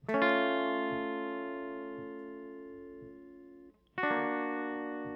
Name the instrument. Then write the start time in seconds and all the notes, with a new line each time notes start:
electric guitar
0.09 A3
0.14 C#4
0.22 F4
3.98 F#4
4.03 D4
4.11 A#3
4.17 D3